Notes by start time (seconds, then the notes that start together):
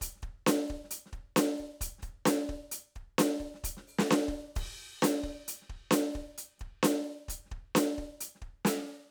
0.01 closed hi-hat, kick
0.15 snare
0.22 kick, closed hi-hat
0.46 closed hi-hat, snare
0.68 kick, closed hi-hat
0.84 snare
0.91 closed hi-hat
1.05 snare
1.13 kick, closed hi-hat
1.36 closed hi-hat, snare
1.58 kick, closed hi-hat
1.81 closed hi-hat, kick
1.98 closed hi-hat, snare
2.03 kick
2.25 closed hi-hat, snare
2.48 kick, closed hi-hat
2.71 closed hi-hat
2.95 kick, closed hi-hat
3.18 closed hi-hat, snare
3.40 kick, closed hi-hat
3.54 snare
3.64 open hi-hat, kick
3.77 snare
3.87 open hi-hat
3.98 snare
4.06 hi-hat pedal
4.11 snare
4.28 kick
4.55 kick, hi-hat pedal, crash
5.02 closed hi-hat, snare
5.23 kick
5.48 closed hi-hat
5.61 snare
5.69 kick, closed hi-hat
5.91 closed hi-hat, snare
6.12 closed hi-hat, kick
6.38 closed hi-hat
6.58 kick, snare, closed hi-hat
6.83 closed hi-hat, snare
7.04 closed hi-hat
7.28 closed hi-hat, kick
7.45 snare
7.50 kick, closed hi-hat
7.75 closed hi-hat, snare
7.98 kick
8.20 closed hi-hat
8.35 snare
8.42 kick, closed hi-hat
8.65 closed hi-hat, snare
8.88 closed hi-hat